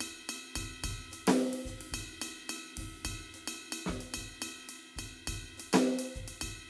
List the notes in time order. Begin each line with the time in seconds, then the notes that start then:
0.01 hi-hat pedal, ride bell
0.30 ride bell
0.56 kick, hi-hat pedal, ride bell
0.84 kick, ride bell
1.12 hi-hat pedal, ride bell
1.28 kick, snare, closed hi-hat, ride
1.54 ride
1.66 kick, hi-hat pedal
1.81 ride
1.93 kick, ride bell
2.22 hi-hat pedal, ride bell
2.50 ride bell
2.78 kick, hi-hat pedal, ride
3.06 kick, ride bell
3.13 kick
3.35 hi-hat pedal, ride bell
3.48 ride bell
3.73 ride bell
3.87 kick, snare
3.92 hi-hat pedal
4.01 ride bell
4.15 kick, ride bell
4.43 hi-hat pedal, ride bell
4.70 ride bell
4.97 kick, hi-hat pedal, ride bell
5.28 kick, ride bell
5.58 hi-hat pedal, ride bell
5.74 snare, ride bell
6.00 ride bell
6.15 kick, hi-hat pedal
6.28 ride bell
6.42 kick, ride bell